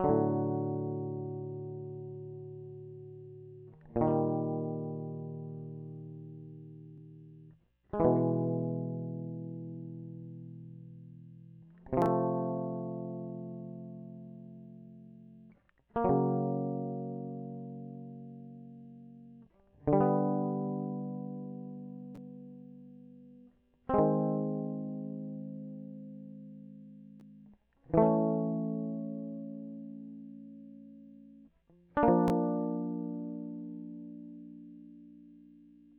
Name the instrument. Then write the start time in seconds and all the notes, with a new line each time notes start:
electric guitar
0.00 F#3
0.05 D3
0.10 A2
3.97 A#2
4.02 D#3
4.08 G3
7.94 G#3
8.01 E3
8.06 B2
11.94 C3 F3
12.03 A3
15.96 A#3
16.05 F#3
16.10 C#3
19.88 D3
19.93 G3
20.01 B3
23.90 C4
23.94 G#3
23.99 D#3
27.94 E3 A3
28.02 C#4
31.74 F3
31.97 D4
32.03 A#3
32.09 F3